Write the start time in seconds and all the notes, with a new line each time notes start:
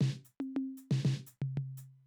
0.01 snare
0.25 hi-hat pedal
0.40 open hi-hat, high tom
0.56 high tom
0.77 hi-hat pedal
0.91 snare
1.05 snare
1.26 hi-hat pedal
1.42 floor tom
1.57 floor tom
1.77 hi-hat pedal